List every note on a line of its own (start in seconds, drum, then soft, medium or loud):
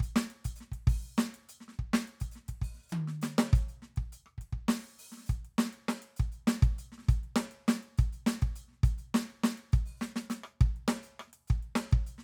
0.01 closed hi-hat medium
0.01 kick medium
0.17 snare loud
0.31 closed hi-hat soft
0.45 open hi-hat medium
0.45 kick medium
0.56 hi-hat pedal soft
0.61 snare soft
0.73 kick soft
0.73 closed hi-hat soft
0.88 open hi-hat medium
0.88 kick loud
1.18 snare loud
1.18 hi-hat pedal soft
1.35 closed hi-hat soft
1.50 closed hi-hat medium
1.61 snare soft
1.69 snare soft
1.72 snare soft
1.80 kick medium
1.80 closed hi-hat soft
1.94 snare loud
2.08 closed hi-hat soft
2.21 open hi-hat medium
2.21 kick medium
2.32 hi-hat pedal soft
2.36 snare soft
2.46 kick soft
2.46 snare soft
2.46 closed hi-hat medium
2.62 open hi-hat medium
2.62 kick medium
2.75 snare soft
2.78 snare soft
2.90 hi-hat pedal soft
2.90 high tom loud
3.08 snare soft
3.22 snare medium
3.22 hi-hat pedal medium
3.39 snare loud
3.54 closed hi-hat medium
3.54 kick loud
3.69 closed hi-hat soft
3.83 snare soft
3.97 kick medium
3.97 closed hi-hat soft
4.13 closed hi-hat soft
4.27 cross-stick soft
4.39 kick soft
4.39 closed hi-hat soft
4.53 kick medium
4.69 open hi-hat medium
4.69 snare loud
5.00 open hi-hat medium
5.13 snare soft
5.18 snare soft
5.22 snare soft
5.25 snare soft
5.25 hi-hat pedal soft
5.29 closed hi-hat soft
5.29 kick medium
5.29 snare soft
5.46 closed hi-hat soft
5.59 snare loud
5.66 snare soft
5.74 closed hi-hat soft
5.89 snare medium
5.98 snare soft
6.02 snare soft
6.02 closed hi-hat soft
6.17 closed hi-hat medium
6.17 kick medium
6.33 closed hi-hat soft
6.48 snare loud
6.61 kick loud
6.61 snare soft
6.61 closed hi-hat soft
6.79 closed hi-hat medium
6.93 snare soft
6.99 snare soft
7.03 snare soft
7.07 closed hi-hat soft
7.07 kick loud
7.07 snare soft
7.24 closed hi-hat soft
7.37 snare loud
7.52 closed hi-hat soft
7.69 snare loud
7.78 snare soft
7.84 closed hi-hat soft
7.98 closed hi-hat soft
7.98 kick loud
8.13 closed hi-hat soft
8.27 snare loud
8.43 kick medium
8.43 closed hi-hat soft
8.56 closed hi-hat medium
8.69 snare soft
8.72 snare soft
8.84 closed hi-hat soft
8.84 kick loud
8.99 closed hi-hat soft
9.15 snare loud
9.31 closed hi-hat soft
9.44 snare loud
9.58 closed hi-hat soft
9.73 closed hi-hat soft
9.73 kick loud
9.87 open hi-hat soft
10.02 snare medium
10.02 hi-hat pedal soft
10.17 snare medium
10.31 snare medium
10.31 hi-hat pedal medium
10.44 cross-stick medium
10.62 kick loud
10.62 closed hi-hat soft
10.77 closed hi-hat soft
10.89 snare loud
10.97 snare soft
11.04 closed hi-hat soft
11.20 cross-stick medium
11.28 snare soft
11.34 closed hi-hat soft
11.48 closed hi-hat soft
11.48 kick medium
11.63 closed hi-hat soft
11.76 snare loud
11.92 kick loud
11.92 closed hi-hat soft
12.07 closed hi-hat soft
12.19 snare soft